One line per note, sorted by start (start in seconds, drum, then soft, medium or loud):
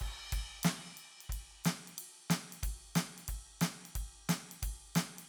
0.00 kick medium
0.00 ride medium
0.32 kick medium
0.32 ride medium
0.63 snare loud
0.63 ride loud
0.97 ride medium
1.20 ride soft
1.29 kick medium
1.29 ride medium
1.64 snare loud
1.64 hi-hat pedal medium
1.64 ride medium
1.87 ride soft
1.98 ride medium
2.30 snare loud
2.30 hi-hat pedal medium
2.30 ride medium
2.52 ride medium
2.63 kick medium
2.63 ride medium
2.95 snare loud
2.95 hi-hat pedal medium
2.95 ride medium
3.18 ride soft
3.28 kick medium
3.28 ride medium
3.61 snare loud
3.61 hi-hat pedal medium
3.61 ride medium
3.85 ride soft
3.95 kick medium
3.95 ride medium
4.29 snare loud
4.29 hi-hat pedal medium
4.29 ride medium
4.51 ride medium
4.62 kick medium
4.62 ride medium
4.95 snare loud
4.95 hi-hat pedal medium
4.95 ride medium
5.18 ride medium